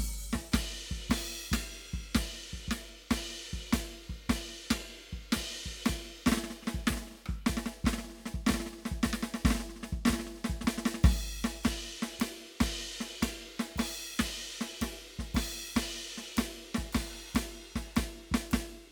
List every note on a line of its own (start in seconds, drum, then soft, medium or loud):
0.33 kick soft
0.33 snare loud
0.52 kick medium
0.52 snare loud
0.52 crash loud
0.91 kick medium
1.10 kick medium
1.10 snare loud
1.10 crash loud
1.52 kick medium
1.52 snare loud
1.52 ride bell loud
1.94 kick medium
2.15 kick medium
2.15 snare loud
2.15 crash loud
2.53 kick soft
2.68 kick soft
2.68 snare loud
2.68 ride bell soft
3.11 kick soft
3.11 snare loud
3.11 crash loud
3.53 kick soft
3.73 kick medium
3.73 snare loud
3.73 ride bell medium
4.10 kick soft
4.30 kick medium
4.30 snare loud
4.30 crash medium
4.71 kick soft
4.71 snare loud
4.71 ride bell loud
5.13 kick soft
5.32 snare loud
5.32 crash loud
5.37 kick soft
5.66 kick soft
5.86 kick medium
5.86 snare loud
5.86 ride bell medium
6.26 kick medium
6.26 snare loud
6.32 snare loud
6.37 snare medium
6.44 snare medium
6.50 snare medium
6.63 snare soft
6.67 snare medium
6.75 kick medium
6.87 kick medium
6.87 snare loud
6.92 snare medium
6.97 snare medium
7.02 snare soft
7.07 snare soft
7.11 snare soft
7.15 snare soft
7.18 snare soft
7.20 snare soft
7.26 kick medium
7.26 cross-stick medium
7.47 kick medium
7.47 snare loud
7.57 snare medium
7.66 snare medium
7.85 kick medium
7.85 cross-stick medium
7.85 snare loud
7.93 snare medium
7.98 snare medium
8.04 snare soft
8.10 snare soft
8.18 snare soft
8.20 snare soft
8.22 snare soft
8.26 snare medium
8.34 kick medium
8.47 snare loud
8.49 kick medium
8.49 snare loud
8.54 snare medium
8.60 snare medium
8.66 snare medium
8.73 snare soft
8.78 snare soft
8.82 snare soft
8.86 snare medium
8.92 kick medium
9.03 kick medium
9.03 snare loud
9.13 snare medium
9.23 snare medium
9.34 snare medium
9.45 kick medium
9.45 snare loud
9.49 snare medium
9.51 snare loud
9.55 snare medium
9.60 snare medium
9.69 snare soft
9.76 snare soft
9.81 snare soft
9.83 snare medium
9.93 kick medium
10.06 snare loud
10.08 kick medium
10.08 snare loud
10.13 snare medium
10.20 snare medium
10.27 snare soft
10.31 snare soft
10.35 snare soft
10.38 snare soft
10.45 snare medium
10.50 kick medium
10.61 kick soft
10.61 snare medium
10.67 snare loud
10.78 snare medium
10.86 snare loud
10.94 snare medium
11.04 kick loud
11.04 snare loud
11.04 crash loud
11.44 snare loud
11.64 kick medium
11.64 snare loud
11.64 crash loud
12.02 snare medium
12.19 kick soft
12.19 snare loud
12.19 ride loud
12.61 kick medium
12.61 snare loud
12.61 crash loud
13.01 snare medium
13.23 kick soft
13.23 snare loud
13.23 ride bell loud
13.60 snare loud
13.76 kick soft
13.76 snare loud
13.76 crash loud
14.19 kick soft
14.19 snare loud
14.19 crash loud
14.61 snare medium
14.82 kick soft
14.82 snare loud
14.82 ride loud
15.19 kick soft
15.19 snare medium
15.35 kick medium
15.35 snare loud
15.35 crash loud
15.76 kick soft
15.76 snare loud
15.76 crash loud
16.18 snare medium
16.37 kick soft
16.37 snare loud
16.37 ride loud
16.75 kick soft
16.75 snare loud
16.93 kick medium
16.93 snare loud
16.93 crash medium
17.35 kick medium
17.35 snare loud
17.35 ride loud
17.76 kick soft
17.76 snare medium
17.96 kick medium
17.96 snare loud
17.96 ride medium
18.32 kick medium
18.32 snare loud
18.52 kick medium
18.52 snare loud
18.52 ride medium